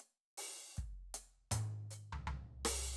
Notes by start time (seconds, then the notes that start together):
0.00 closed hi-hat
0.37 open hi-hat
0.75 kick, closed hi-hat, hi-hat pedal
1.14 closed hi-hat
1.51 closed hi-hat, high tom
1.91 hi-hat pedal
2.12 floor tom
2.27 floor tom
2.65 open hi-hat, cross-stick